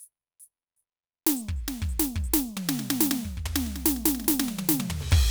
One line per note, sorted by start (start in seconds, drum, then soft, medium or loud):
0.00 hi-hat pedal medium
0.40 hi-hat pedal medium
0.50 closed hi-hat soft
0.76 hi-hat pedal soft
1.27 snare loud
1.36 closed hi-hat loud
1.48 kick medium
1.56 closed hi-hat soft
1.68 snare medium
1.82 kick medium
1.89 closed hi-hat medium
1.99 snare loud
2.16 kick medium
2.24 closed hi-hat medium
2.33 snare loud
2.46 closed hi-hat soft
2.57 high tom loud
2.69 snare loud
2.79 snare medium
2.90 snare loud
3.01 snare loud
3.11 snare loud
3.25 kick soft
3.37 kick soft
3.46 floor tom loud
3.56 snare loud
3.66 snare soft
3.76 snare medium
3.86 snare loud
3.96 snare soft
4.05 snare loud
4.15 snare medium
4.20 snare medium
4.24 snare soft
4.28 snare loud
4.40 snare loud
4.48 high tom medium
4.58 high tom loud
4.69 snare loud
4.80 high tom loud
4.90 floor tom loud
5.00 kick soft
5.00 crash medium
5.11 kick loud
5.11 crash loud